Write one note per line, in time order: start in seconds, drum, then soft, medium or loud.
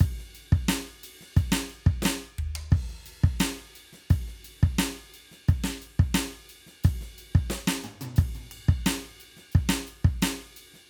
0.01 kick loud
0.01 ride loud
0.19 snare soft
0.36 ride medium
0.53 kick loud
0.69 snare loud
0.69 ride loud
1.04 ride loud
1.22 snare soft
1.37 kick loud
1.37 ride medium
1.53 snare loud
1.70 ride bell medium
1.87 kick loud
1.99 kick soft
2.03 snare loud
2.06 snare loud
2.39 mid tom loud
2.56 high tom loud
2.72 kick loud
2.72 crash medium
2.90 high tom soft
3.07 ride loud
3.25 kick loud
3.41 snare loud
3.41 ride loud
3.76 ride medium
3.94 snare soft
4.11 kick loud
4.11 ride loud
4.28 snare soft
4.45 ride loud
4.64 kick loud
4.79 snare loud
4.79 ride loud
5.15 ride medium
5.32 snare soft
5.49 kick loud
5.49 ride medium
5.65 snare loud
5.83 ride medium
6.00 kick loud
6.15 snare loud
6.15 ride loud
6.50 ride medium
6.67 snare soft
6.85 kick loud
6.85 ride loud
7.02 snare soft
7.19 ride medium
7.36 kick loud
7.51 snare loud
7.68 snare loud
7.85 floor tom loud
8.02 mid tom loud
8.17 kick loud
8.17 ride loud
8.36 mid tom soft
8.52 ride bell loud
8.69 kick loud
8.87 snare loud
8.87 ride loud
9.21 ride medium
9.38 snare soft
9.53 kick loud
9.53 ride medium
9.70 snare loud
9.88 ride medium
10.05 kick loud
10.23 snare loud
10.23 ride loud
10.57 ride loud
10.75 snare soft